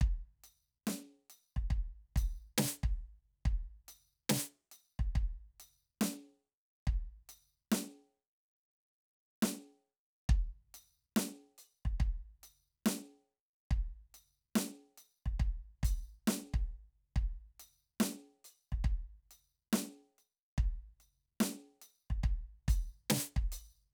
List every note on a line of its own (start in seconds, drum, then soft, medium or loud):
0.01 kick medium
0.44 closed hi-hat medium
0.87 snare loud
1.30 closed hi-hat medium
1.56 kick soft
1.70 kick medium
2.16 kick medium
2.16 closed hi-hat medium
2.58 snare loud
2.83 kick medium
3.45 kick medium
3.88 closed hi-hat medium
4.29 snare loud
4.72 closed hi-hat medium
4.99 kick medium
5.15 kick medium
5.60 closed hi-hat medium
6.01 snare loud
6.87 kick medium
7.29 closed hi-hat medium
7.72 snare loud
9.43 snare loud
10.29 kick medium
10.29 ride soft
10.74 closed hi-hat medium
11.16 snare loud
11.58 closed hi-hat soft
11.85 kick soft
12.00 kick medium
12.43 closed hi-hat medium
12.86 snare loud
13.71 kick medium
13.71 crash soft
13.71 ride soft
14.14 closed hi-hat medium
14.56 snare loud
14.98 closed hi-hat medium
15.26 kick soft
15.40 kick medium
15.83 closed hi-hat medium
15.83 kick medium
15.83 snare soft
16.28 snare loud
16.54 kick medium
17.16 kick medium
17.16 ride soft
17.60 closed hi-hat medium
18.00 snare loud
18.44 closed hi-hat soft
18.72 kick soft
18.84 kick medium
19.31 closed hi-hat medium
19.73 snare loud
20.18 closed hi-hat soft
20.58 kick medium
20.58 crash soft
20.58 ride soft
21.00 closed hi-hat soft
21.40 snare loud
21.82 closed hi-hat medium
22.10 kick soft
22.24 kick medium
22.24 crash soft
22.68 closed hi-hat medium
22.68 kick medium
23.10 snare loud
23.36 kick medium
23.52 closed hi-hat medium